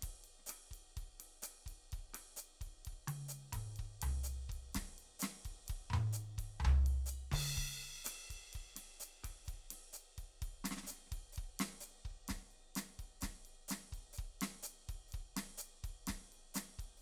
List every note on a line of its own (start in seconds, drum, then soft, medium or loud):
0.01 kick soft
0.01 snare soft
0.01 ride medium
0.08 kick soft
0.24 ride soft
0.39 snare soft
0.46 cross-stick soft
0.46 hi-hat pedal medium
0.46 ride medium
0.71 kick soft
0.71 ride soft
0.97 kick soft
0.97 ride soft
1.02 kick soft
1.20 cross-stick soft
1.20 ride medium
1.42 cross-stick soft
1.42 hi-hat pedal medium
1.42 ride medium
1.66 kick soft
1.66 ride soft
1.71 kick soft
1.92 kick soft
1.92 ride soft
1.98 kick soft
2.13 cross-stick soft
2.13 snare soft
2.13 ride medium
2.36 hi-hat pedal medium
2.36 ride soft
2.59 kick soft
2.59 mid tom soft
2.59 ride soft
2.66 kick soft
2.85 kick soft
2.85 ride soft
2.92 kick soft
3.08 high tom medium
3.08 ride medium
3.28 hi-hat pedal medium
3.28 ride soft
3.53 kick soft
3.53 mid tom medium
3.53 ride medium
3.60 kick soft
3.76 kick soft
3.76 ride soft
3.84 kick soft
4.02 floor tom medium
4.02 ride medium
4.24 hi-hat pedal medium
4.28 ride soft
4.49 kick soft
4.49 ride soft
4.55 kick soft
4.72 kick soft
4.72 snare medium
4.72 hi-hat pedal soft
4.72 ride medium
4.81 kick soft
4.98 ride soft
5.19 snare medium
5.19 hi-hat pedal medium
5.19 ride medium
5.45 kick soft
5.45 ride soft
5.51 kick soft
5.66 kick soft
5.66 hi-hat pedal soft
5.66 ride medium
5.75 kick soft
5.90 mid tom medium
5.94 mid tom loud
6.13 hi-hat pedal medium
6.13 ride soft
6.38 kick soft
6.38 ride medium
6.44 kick soft
6.60 floor tom loud
6.64 kick soft
6.64 floor tom loud
6.86 ride soft
7.06 hi-hat pedal medium
7.06 ride bell soft
7.32 kick soft
7.32 high tom loud
7.32 crash loud
7.39 kick soft
7.57 kick soft
7.57 ride soft
7.63 kick soft
7.74 snare soft
7.84 ride soft
8.04 cross-stick soft
8.04 snare soft
8.04 hi-hat pedal medium
8.04 ride medium
8.30 kick soft
8.30 ride soft
8.35 kick soft
8.53 kick soft
8.53 ride soft
8.60 kick soft
8.76 snare soft
8.76 ride medium
9.00 hi-hat pedal medium
9.00 ride soft
9.23 kick soft
9.23 cross-stick soft
9.23 snare soft
9.23 ride medium
9.30 kick soft
9.39 snare soft
9.45 kick soft
9.45 hi-hat pedal soft
9.45 ride soft
9.53 kick soft
9.71 snare soft
9.71 ride medium
9.93 hi-hat pedal medium
9.93 ride soft
10.18 kick soft
10.18 ride soft
10.23 kick soft
10.42 kick soft
10.42 ride soft
10.48 kick soft
10.64 snare medium
10.64 ride medium
10.71 snare medium
10.77 snare soft
10.83 snare soft
10.83 hi-hat pedal medium
10.90 snare soft
10.90 ride soft
10.96 snare soft
11.00 snare soft
11.06 snare soft
11.11 kick soft
11.11 snare soft
11.11 ride soft
11.14 kick soft
11.14 snare soft
11.32 hi-hat pedal soft
11.32 ride soft
11.38 kick soft
11.44 kick soft
11.59 snare medium
11.59 ride medium
11.80 hi-hat pedal medium
11.80 ride soft
12.05 kick soft
12.05 ride soft
12.10 kick soft
12.28 kick soft
12.28 snare medium
12.28 hi-hat pedal soft
12.28 ride medium
12.36 kick soft
12.51 ride soft
12.76 snare medium
12.76 hi-hat pedal medium
12.76 ride medium
12.99 kick soft
12.99 ride soft
13.04 kick soft
13.21 kick soft
13.21 snare medium
13.21 hi-hat pedal medium
13.21 ride medium
13.28 kick soft
13.45 ride soft
13.68 snare medium
13.68 hi-hat pedal medium
13.68 ride medium
13.92 kick soft
13.92 ride soft
13.98 kick soft
14.13 hi-hat pedal soft
14.18 kick soft
14.18 ride soft
14.24 kick soft
14.41 snare medium
14.41 ride medium
14.63 hi-hat pedal medium
14.63 ride soft
14.89 kick soft
14.89 ride soft
14.94 kick soft
15.08 hi-hat pedal soft
15.12 kick soft
15.12 ride soft
15.20 kick soft
15.37 snare medium
15.37 ride medium
15.58 hi-hat pedal medium
15.58 ride soft
15.84 kick soft
15.84 ride soft
15.89 kick soft
16.07 kick soft
16.07 snare medium
16.07 ride medium
16.14 kick soft
16.32 ride soft
16.54 snare medium
16.54 hi-hat pedal medium
16.54 ride medium
16.79 kick soft
16.79 ride soft
16.84 kick soft
16.97 hi-hat pedal soft